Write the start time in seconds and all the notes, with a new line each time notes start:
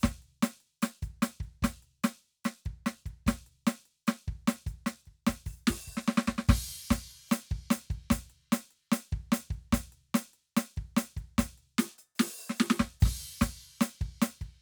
0.01 closed hi-hat, kick, snare, hi-hat pedal
0.22 closed hi-hat
0.43 closed hi-hat, snare
0.61 closed hi-hat
0.82 closed hi-hat, snare
1.03 closed hi-hat, kick
1.22 closed hi-hat, snare
1.40 kick, closed hi-hat
1.63 closed hi-hat, kick, snare
1.83 closed hi-hat
2.04 closed hi-hat, snare
2.24 closed hi-hat
2.45 closed hi-hat, snare
2.66 kick, closed hi-hat
2.86 closed hi-hat, snare
3.06 kick, closed hi-hat
3.27 closed hi-hat, kick, snare
3.47 closed hi-hat
3.67 closed hi-hat, snare
3.86 closed hi-hat
4.07 closed hi-hat, snare
4.27 kick, closed hi-hat
4.48 closed hi-hat, snare
4.67 closed hi-hat, kick
4.86 closed hi-hat, snare
5.06 kick, closed hi-hat
5.27 open hi-hat, kick, snare
5.46 open hi-hat, kick
5.67 open hi-hat, kick, snare
5.87 open hi-hat, kick
5.97 snare
6.08 snare
6.18 snare
6.26 kick, hi-hat pedal
6.38 snare
6.48 kick, snare, hi-hat pedal, crash
6.69 closed hi-hat
6.89 closed hi-hat, kick, snare, hi-hat pedal
7.11 closed hi-hat
7.29 closed hi-hat, snare, hi-hat pedal
7.51 kick, closed hi-hat
7.71 closed hi-hat, snare
7.90 kick, closed hi-hat
8.11 closed hi-hat, kick, snare
8.30 closed hi-hat
8.53 closed hi-hat, snare
8.71 closed hi-hat
8.92 closed hi-hat, snare
9.12 kick, closed hi-hat
9.32 closed hi-hat, snare
9.51 kick, closed hi-hat
9.73 closed hi-hat, kick, snare
9.92 closed hi-hat
10.15 closed hi-hat, snare
10.34 closed hi-hat
10.57 closed hi-hat, snare
10.77 kick, closed hi-hat
10.97 closed hi-hat, snare
11.17 kick, closed hi-hat
11.39 closed hi-hat, kick, snare
11.58 closed hi-hat
11.79 closed hi-hat, snare
11.98 closed hi-hat
12.16 hi-hat pedal
12.20 open hi-hat, snare
12.39 open hi-hat
12.50 snare
12.57 snare, hi-hat pedal
12.80 kick, snare
13.01 kick, hi-hat pedal, crash
13.06 snare
13.21 closed hi-hat
13.41 closed hi-hat, kick, snare, hi-hat pedal
13.61 closed hi-hat
13.81 closed hi-hat, snare
14.01 kick, closed hi-hat
14.22 closed hi-hat, snare
14.41 kick, closed hi-hat